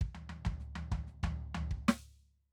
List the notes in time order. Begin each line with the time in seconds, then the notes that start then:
0.01 kick
0.15 floor tom
0.29 floor tom
0.45 kick, floor tom
0.60 snare
0.76 floor tom
0.92 kick, floor tom
1.07 snare
1.23 kick, floor tom
1.55 floor tom
1.71 kick
1.88 snare